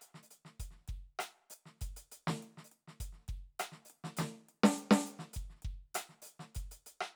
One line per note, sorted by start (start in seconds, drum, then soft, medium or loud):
0.01 closed hi-hat soft
0.14 snare soft
0.23 hi-hat pedal soft
0.30 closed hi-hat soft
0.45 snare soft
0.60 closed hi-hat medium
0.60 kick soft
0.71 snare soft
0.75 snare soft
0.79 snare soft
0.82 snare soft
0.88 kick soft
0.88 closed hi-hat soft
1.19 open hi-hat medium
1.19 cross-stick medium
1.50 hi-hat pedal medium
1.50 open hi-hat soft
1.65 snare soft
1.76 snare soft
1.81 closed hi-hat medium
1.81 kick soft
1.96 closed hi-hat medium
2.12 closed hi-hat medium
2.27 snare medium
2.42 closed hi-hat soft
2.57 snare soft
2.64 hi-hat pedal soft
2.71 closed hi-hat soft
2.87 snare soft
3.00 closed hi-hat medium
3.00 kick soft
3.12 snare soft
3.17 snare soft
3.19 snare soft
3.28 kick soft
3.28 closed hi-hat soft
3.37 kick soft
3.59 closed hi-hat medium
3.59 cross-stick medium
3.72 snare soft
3.85 hi-hat pedal medium
3.90 closed hi-hat soft
4.04 snare medium
4.17 closed hi-hat medium
4.17 snare medium
4.49 closed hi-hat soft
4.63 snare loud
4.77 closed hi-hat soft
4.91 snare loud
5.06 closed hi-hat medium
5.19 snare soft
5.33 closed hi-hat medium
5.33 kick soft
5.50 snare soft
5.55 snare soft
5.62 kick soft
5.62 closed hi-hat soft
5.74 kick soft
5.94 closed hi-hat loud
5.94 cross-stick medium
6.09 snare soft
6.22 closed hi-hat soft
6.22 hi-hat pedal medium
6.39 snare soft
6.55 closed hi-hat medium
6.55 kick soft
6.55 snare soft
6.60 snare soft
6.71 closed hi-hat medium
6.86 closed hi-hat medium
7.00 cross-stick medium